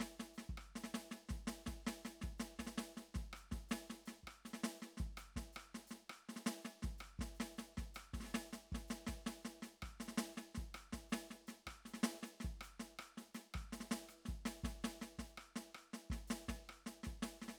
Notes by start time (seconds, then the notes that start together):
0.01 snare
0.20 snare
0.35 hi-hat pedal
0.39 snare
0.50 kick
0.58 cross-stick
0.76 snare
0.85 snare
0.95 snare
1.12 snare
1.30 kick, snare
1.48 snare, hi-hat pedal
1.67 kick, snare
1.87 snare
2.06 snare, hi-hat pedal
2.22 kick, snare
2.39 snare, hi-hat pedal
2.60 kick, snare
2.68 snare
2.79 snare
2.98 snare
3.15 kick, snare
3.34 cross-stick, hi-hat pedal
3.52 kick, snare
3.70 snare, hi-hat pedal
3.91 snare
4.06 snare, hi-hat pedal
4.24 kick, cross-stick
4.46 snare, hi-hat pedal
4.54 snare
4.64 snare
4.83 snare
4.98 kick, snare
5.18 cross-stick, hi-hat pedal
5.37 kick, snare
5.54 cross-stick, hi-hat pedal
5.75 snare
5.88 snare, hi-hat pedal
6.10 cross-stick
6.30 snare
6.37 snare
6.47 snare
6.64 snare, hi-hat pedal
6.83 kick, snare
6.99 cross-stick, hi-hat pedal
7.20 kick, snare
7.35 hi-hat pedal
7.41 snare
7.58 snare, hi-hat pedal
7.78 kick, snare
7.95 cross-stick, hi-hat pedal
8.14 kick, snare
8.21 snare
8.23 snare
8.25 snare
8.35 snare
8.54 snare, hi-hat pedal
8.73 kick, snare
8.89 snare, hi-hat pedal
9.08 kick, snare
9.27 snare, hi-hat pedal
9.46 snare
9.63 snare, hi-hat pedal
9.83 kick, cross-stick
10.01 snare, hi-hat pedal
10.09 snare
10.18 snare
10.38 snare
10.56 kick, snare
10.75 cross-stick, hi-hat pedal
10.93 kick, snare
11.10 snare, hi-hat pedal
11.31 snare
11.48 snare, hi-hat pedal
11.68 kick, cross-stick
11.86 snare, hi-hat pedal
11.95 snare
12.04 snare
12.24 snare, hi-hat pedal
12.41 snare
12.45 kick
12.62 cross-stick, hi-hat pedal
12.80 snare
13.00 cross-stick, hi-hat pedal
13.18 snare
13.35 snare, hi-hat pedal
13.55 kick, cross-stick
13.73 snare, hi-hat pedal
13.81 snare
13.92 snare
14.10 cross-stick, hi-hat pedal
14.26 kick, snare
14.46 snare, hi-hat pedal
14.65 kick, snare
14.83 snare, hi-hat pedal
15.02 snare
15.20 kick, snare
15.28 hi-hat pedal
15.38 cross-stick
15.57 snare
15.76 cross-stick
15.94 snare
16.11 kick, snare
16.28 snare, hi-hat pedal
16.49 kick, snare
16.70 cross-stick
16.87 snare, hi-hat pedal
17.04 kick, snare
17.23 snare, hi-hat pedal
17.43 snare
17.49 snare